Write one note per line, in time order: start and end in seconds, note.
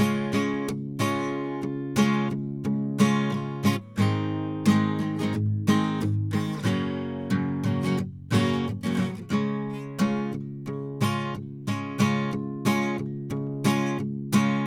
0.00 0.34 C#3
0.00 0.33 G#3
0.00 0.35 C#4
0.00 0.31 F4
0.31 0.69 C#3
0.31 0.71 G#3
0.31 0.76 C#4
0.31 0.67 F4
0.67 1.00 C#3
0.67 1.03 F4
1.01 1.64 C#3
1.01 1.64 G#3
1.01 1.99 C#4
1.01 2.00 F4
1.64 1.97 C#3
1.64 1.96 G#3
1.98 2.32 C#3
1.98 2.32 G#3
1.98 2.38 C#4
1.98 2.34 F4
2.32 2.65 C#3
2.32 2.64 G#3
2.66 3.01 C#3
2.66 3.00 G#3
3.01 3.31 C#3
3.01 3.32 G#3
3.01 3.33 C#4
3.01 3.36 F4
3.32 3.65 C#3
3.32 3.66 G#3
3.32 3.67 C#4
3.36 3.67 F4
3.65 3.81 C#3
3.65 3.79 G#3
3.65 3.82 C#4
3.65 3.82 F4
3.99 4.67 G#2
3.99 4.67 D#3
3.99 4.67 G#3
3.99 4.68 C4
4.03 4.67 D#4
4.67 5.34 G#2
4.67 5.35 D#3
4.67 5.01 G#3
4.67 5.02 C4
4.67 5.04 D#4
4.67 5.17 G#4
5.01 5.23 G#3
5.01 5.21 C4
5.01 5.17 D#4
5.21 5.35 G#3
5.21 5.38 C4
5.21 5.39 D#4
5.21 5.39 G#4
5.34 6.03 G#2
5.34 5.69 D#3
5.34 5.69 G#3
5.69 6.02 D#3
5.69 6.03 G#3
5.69 6.05 C4
5.69 6.07 D#4
5.69 6.09 G#4
6.03 6.32 G#2
6.03 6.34 D#3
6.03 6.15 G#3
6.32 6.53 G#2
6.32 6.61 D#3
6.32 6.63 G#3
6.37 6.62 C4
6.65 7.31 F#2
6.65 7.32 C#3
6.65 7.32 F#3
6.65 7.33 A#3
6.65 7.68 C#4
7.32 7.50 F#2
7.32 7.65 C#3
7.32 7.64 F#3
7.32 7.67 A#3
7.50 7.89 F#2
7.65 7.88 C#3
7.65 7.86 F#3
7.65 7.87 A#3
7.65 7.79 C#4
7.85 8.01 F#3
7.85 8.03 A#3
7.85 8.03 C#4
7.85 8.04 F#4
7.89 8.00 F#2
7.89 8.00 C#3
8.00 8.32 F#2
8.00 8.32 C#3
8.33 8.69 F#2
8.33 8.71 C#3
8.33 8.71 F#3
8.33 8.72 A#3
8.33 8.73 C#4
8.37 8.72 F#4
8.69 8.88 F#2
8.85 8.97 F#2
8.85 9.01 F#3
8.85 9.02 A#3
8.85 9.05 C#4
8.97 9.08 F#2
8.97 9.18 F#3
9.02 9.12 A#3
9.02 9.24 E4
9.20 9.27 F3
9.33 10.00 C#3
9.33 10.34 G#3
9.33 10.02 C#4
10.01 10.33 C#3
10.01 10.39 C#4
10.01 10.37 F4
10.34 10.67 C#3
10.34 10.66 A3
10.67 11.02 C#3
10.67 11.02 G#3
11.02 11.36 C#3
11.02 11.35 G#3
11.02 11.41 C#4
11.02 11.40 F4
11.35 11.68 C#3
11.35 11.45 G#3
11.69 12.01 C#3
11.69 12.01 G#3
11.69 12.03 C#4
11.69 12.01 F4
12.01 12.34 C#3
12.01 12.33 G#3
12.01 12.36 C#4
12.01 12.34 F4
12.33 12.66 C#3
12.33 12.65 G#3
12.33 12.68 F4
12.67 13.00 C#3
12.67 12.99 G#3
12.67 13.02 C#4
12.67 13.03 F4
13.00 13.32 C#3
13.00 13.30 G#3
13.32 13.66 C#3
13.32 13.65 G#3
13.66 14.01 C#3
13.66 14.00 G#3
13.66 14.03 C#4
13.66 14.04 F4
14.01 14.34 C#3
14.01 14.33 G#3
14.34 14.67 C#3
14.34 14.67 G#3
14.34 14.67 C#4
14.34 14.67 F4